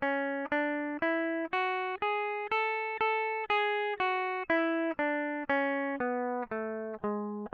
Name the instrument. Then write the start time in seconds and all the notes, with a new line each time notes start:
electric guitar
0.02 C#4
0.52 D4
1.02 E4
1.53 F#4
2.02 G#4
2.52 A4
3.01 A4
3.50 G#4
4.00 F#4
4.50 E4
4.99 D4
5.50 C#4
6.01 B3
6.52 A3
7.04 G#3